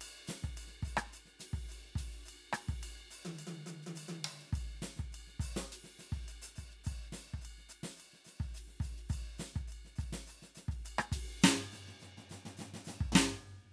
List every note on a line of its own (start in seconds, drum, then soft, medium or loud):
0.01 hi-hat pedal medium
0.01 ride bell loud
0.28 snare medium
0.28 hi-hat pedal medium
0.28 ride medium
0.43 kick soft
0.43 snare soft
0.57 hi-hat pedal medium
0.57 ride bell medium
0.68 snare soft
0.83 kick soft
0.83 hi-hat pedal medium
0.83 ride soft
0.97 cross-stick medium
1.13 hi-hat pedal medium
1.13 ride bell medium
1.26 snare soft
1.40 snare soft
1.40 hi-hat pedal medium
1.40 ride loud
1.54 kick soft
1.54 ride soft
1.69 hi-hat pedal medium
1.69 ride bell medium
1.84 snare soft
1.96 kick medium
1.96 hi-hat pedal medium
1.96 ride medium
2.13 ride soft
2.26 hi-hat pedal medium
2.26 ride bell medium
2.53 cross-stick medium
2.53 hi-hat pedal medium
2.53 ride medium
2.68 kick medium
2.68 snare soft
2.83 hi-hat pedal medium
2.83 ride bell medium
3.11 hi-hat pedal medium
3.11 ride soft
3.25 high tom loud
3.25 ride soft
3.39 hi-hat pedal medium
3.39 ride bell medium
3.47 high tom loud
3.67 hi-hat pedal medium
3.67 high tom medium
3.67 ride bell soft
3.83 high tom loud
3.83 ride soft
3.96 hi-hat pedal medium
3.96 ride bell medium
4.09 open hi-hat soft
4.09 high tom loud
4.25 hi-hat pedal medium
4.25 high tom loud
4.25 ride medium
4.41 ride soft
4.53 kick medium
4.53 hi-hat pedal medium
4.53 ride bell medium
4.82 snare medium
4.82 hi-hat pedal soft
4.82 ride bell soft
4.96 kick soft
4.96 snare soft
4.96 ride soft
5.13 hi-hat pedal soft
5.13 ride bell medium
5.28 snare soft
5.40 kick medium
5.40 hi-hat pedal loud
5.40 ride soft
5.56 snare medium
5.56 ride soft
5.72 hi-hat pedal medium
5.72 ride loud
5.85 snare soft
5.99 snare soft
5.99 hi-hat pedal medium
5.99 ride soft
6.12 kick soft
6.12 ride soft
6.28 hi-hat pedal medium
6.28 ride bell medium
6.42 open hi-hat loud
6.56 kick soft
6.56 hi-hat pedal medium
6.56 ride bell soft
6.70 snare soft
6.70 ride soft
6.84 kick soft
6.84 hi-hat pedal medium
6.84 ride bell medium
7.13 snare medium
7.13 hi-hat pedal medium
7.13 ride bell soft
7.28 snare soft
7.28 ride soft
7.34 kick soft
7.42 hi-hat pedal medium
7.42 ride bell medium
7.59 snare soft
7.70 hi-hat pedal medium
7.70 ride soft
7.84 snare medium
7.84 ride soft
7.97 hi-hat pedal medium
7.97 ride bell medium
8.14 snare soft
8.25 snare soft
8.25 hi-hat pedal medium
8.25 ride soft
8.40 kick soft
8.40 ride soft
8.55 hi-hat pedal medium
8.55 ride medium
8.68 snare soft
8.81 kick medium
8.81 hi-hat pedal medium
8.81 ride soft
8.98 ride soft
9.10 kick medium
9.10 hi-hat pedal medium
9.10 ride soft
9.10 ride bell medium
9.39 snare medium
9.39 hi-hat pedal medium
9.39 ride bell soft
9.54 kick soft
9.54 snare soft
9.54 ride soft
9.68 hi-hat pedal medium
9.73 ride bell medium
9.85 snare soft
9.96 kick soft
9.96 hi-hat pedal soft
10.00 ride soft
10.13 snare medium
10.13 ride soft
10.27 cross-stick soft
10.27 hi-hat pedal medium
10.27 ride soft
10.43 snare soft
10.55 snare soft
10.55 hi-hat pedal medium
10.55 ride soft
10.69 kick medium
10.69 ride soft
10.85 hi-hat pedal medium
10.85 ride bell medium
10.99 cross-stick medium
11.12 kick medium
11.12 hi-hat pedal medium
11.12 ride loud
11.42 snare loud
11.42 floor tom loud
11.42 hi-hat pedal medium
11.72 snare soft
11.72 floor tom soft
11.72 hi-hat pedal medium
11.88 snare soft
11.88 floor tom soft
12.00 snare soft
12.00 floor tom soft
12.00 hi-hat pedal soft
12.18 snare soft
12.18 floor tom soft
12.30 snare soft
12.30 floor tom medium
12.30 hi-hat pedal medium
12.46 snare soft
12.46 floor tom medium
12.57 snare medium
12.57 floor tom medium
12.57 hi-hat pedal medium
12.74 snare medium
12.74 floor tom medium
12.85 snare medium
12.85 hi-hat pedal medium
12.89 floor tom medium
13.01 kick medium
13.13 snare loud
13.13 floor tom loud
13.13 hi-hat pedal soft